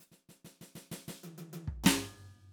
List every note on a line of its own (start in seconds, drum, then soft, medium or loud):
0.00 snare soft
0.00 hi-hat pedal soft
0.12 snare soft
0.29 snare soft
0.45 snare soft
0.61 snare soft
0.75 snare soft
0.92 snare medium
1.08 snare medium
1.24 closed hi-hat soft
1.24 high tom medium
1.38 closed hi-hat soft
1.38 high tom medium
1.53 high tom medium
1.68 kick soft
1.84 snare loud
1.84 floor tom loud